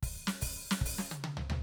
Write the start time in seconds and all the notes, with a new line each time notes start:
0.03 open hi-hat, kick
0.27 snare
0.41 open hi-hat, kick
0.71 snare
0.81 kick
0.85 open hi-hat
0.98 snare
1.11 hi-hat pedal, high tom
1.24 high tom
1.37 floor tom
1.50 floor tom